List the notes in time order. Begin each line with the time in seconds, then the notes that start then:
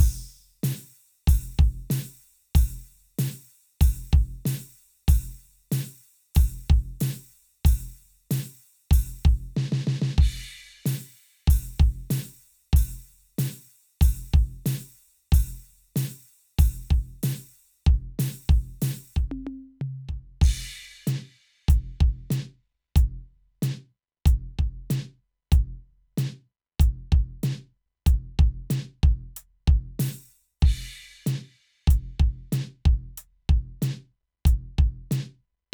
0.01 open hi-hat, kick, crash
0.65 open hi-hat, snare
0.74 snare
1.29 open hi-hat, kick
1.61 kick
1.92 open hi-hat, snare
2.57 open hi-hat, kick
3.21 open hi-hat, snare
3.83 open hi-hat, kick
4.15 kick
4.48 open hi-hat, snare
5.10 open hi-hat, kick
5.33 kick
5.74 open hi-hat, snare
6.37 open hi-hat, kick
6.72 kick
7.03 open hi-hat, snare
7.67 open hi-hat, kick
8.33 open hi-hat, snare
8.93 open hi-hat, kick
9.27 kick
9.57 snare, hi-hat pedal
9.74 snare
9.89 snare
10.04 snare
10.20 kick, crash
10.88 open hi-hat, snare
11.49 open hi-hat, kick
11.82 kick
12.13 open hi-hat, snare
12.19 snare
12.75 open hi-hat, kick
13.41 open hi-hat, snare
13.48 snare
14.03 open hi-hat, kick
14.36 kick
14.68 open hi-hat, snare
15.34 open hi-hat, kick
15.98 open hi-hat, snare
16.61 open hi-hat, kick
16.93 kick
17.25 open hi-hat, snare
17.88 kick
18.21 open hi-hat, snare
18.51 kick
18.84 open hi-hat, snare
19.17 kick, hi-hat pedal
19.34 high tom
19.49 high tom
19.83 floor tom
20.11 kick
20.43 kick, crash
21.09 open hi-hat, snare
21.70 closed hi-hat, kick
22.03 kick
22.33 closed hi-hat, snare
22.98 closed hi-hat, kick
23.64 closed hi-hat, snare
24.28 closed hi-hat, kick
24.61 kick
24.92 closed hi-hat, snare
25.54 closed hi-hat, kick
26.20 closed hi-hat, snare
26.82 closed hi-hat, kick
27.14 kick
27.45 closed hi-hat, snare
28.08 closed hi-hat, kick
28.41 kick
28.72 closed hi-hat, snare
29.05 kick
29.38 closed hi-hat
29.70 kick
30.01 open hi-hat, snare
30.62 kick, hi-hat pedal, crash
31.28 closed hi-hat, snare
31.89 closed hi-hat, kick
32.22 kick
32.54 closed hi-hat, snare
32.88 kick
33.20 closed hi-hat
33.51 kick
33.84 closed hi-hat, snare
34.47 closed hi-hat, kick
34.80 kick
35.13 closed hi-hat, snare